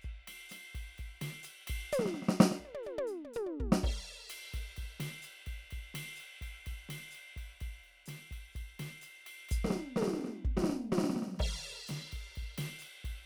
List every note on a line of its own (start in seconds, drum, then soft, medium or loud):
0.01 kick soft
0.01 hi-hat pedal soft
0.27 snare soft
0.27 ride medium
0.49 snare soft
0.49 hi-hat pedal medium
0.49 ride medium
0.74 kick soft
0.74 ride soft
0.95 kick soft
0.95 hi-hat pedal soft
0.95 ride soft
1.21 snare soft
1.21 ride medium
1.43 hi-hat pedal medium
1.43 ride medium
1.67 kick soft
1.67 ride medium
1.92 hi-hat pedal loud
1.92 high tom loud
1.99 snare medium
2.05 snare soft
2.14 snare soft
2.22 snare soft
2.28 snare medium
2.40 snare loud
2.51 snare soft
2.59 kick soft
2.64 high tom soft
2.74 high tom medium
2.83 hi-hat pedal soft
2.83 high tom medium
2.97 high tom loud
3.07 hi-hat pedal medium
3.24 high tom soft
3.33 hi-hat pedal medium
3.33 mid tom medium
3.46 high tom soft
3.59 kick soft
3.59 mid tom medium
3.65 kick soft
3.72 snare medium
3.83 kick soft
3.83 crash medium
3.89 kick soft
4.29 hi-hat pedal medium
4.29 ride medium
4.53 kick soft
4.53 snare soft
4.53 ride medium
4.75 kick soft
4.75 hi-hat pedal soft
4.75 ride soft
4.82 kick soft
4.82 snare soft
4.99 snare soft
4.99 ride medium
5.22 hi-hat pedal medium
5.22 ride soft
5.46 kick soft
5.46 ride soft
5.70 kick soft
5.70 hi-hat pedal soft
5.70 ride soft
5.77 kick soft
5.94 snare soft
5.94 ride medium
6.15 hi-hat pedal medium
6.20 ride soft
6.41 kick soft
6.41 ride soft
6.63 kick soft
6.63 hi-hat pedal soft
6.63 ride soft
6.71 kick soft
6.89 snare soft
6.89 ride medium
7.10 hi-hat pedal medium
7.10 ride soft
7.36 kick soft
7.36 ride soft
7.60 kick soft
7.60 hi-hat pedal soft
7.60 ride soft
7.66 kick soft
7.83 ride soft
8.05 snare soft
8.05 hi-hat pedal medium
8.05 ride medium
8.31 kick soft
8.31 ride soft
8.52 kick soft
8.52 hi-hat pedal soft
8.52 ride soft
8.60 kick soft
8.79 snare soft
8.79 ride medium
9.01 hi-hat pedal medium
9.01 ride soft
9.26 ride medium
9.48 kick soft
9.48 hi-hat pedal loud
9.48 ride soft
9.57 kick soft
9.63 snare medium
9.63 mid tom medium
9.67 snare medium
9.67 mid tom soft
9.70 mid tom soft
9.76 snare soft
9.96 snare medium
9.96 mid tom loud
10.00 snare medium
10.00 mid tom medium
10.04 snare soft
10.04 mid tom medium
10.08 mid tom soft
10.13 snare soft
10.13 mid tom soft
10.16 snare soft
10.16 mid tom soft
10.20 mid tom soft
10.23 snare soft
10.23 mid tom soft
10.28 snare soft
10.44 kick soft
10.50 kick soft
10.56 snare medium
10.56 floor tom medium
10.60 snare medium
10.60 floor tom medium
10.65 snare soft
10.65 floor tom soft
10.72 floor tom soft
10.91 snare medium
10.91 floor tom loud
10.96 snare medium
10.96 floor tom medium
11.02 snare medium
11.02 floor tom medium
11.08 snare soft
11.08 floor tom soft
11.14 snare soft
11.14 floor tom soft
11.22 snare soft
11.28 snare soft
11.34 snare soft
11.39 kick soft
11.39 crash medium
11.45 kick soft
11.87 snare soft
11.87 hi-hat pedal medium
11.87 ride medium
12.12 kick soft
12.12 ride soft
12.33 hi-hat pedal soft
12.33 ride soft
12.37 kick soft
12.42 kick soft
12.57 snare soft
12.57 snare medium
12.57 ride medium
12.78 hi-hat pedal medium
12.78 ride soft
13.04 kick soft
13.04 ride soft
13.09 kick soft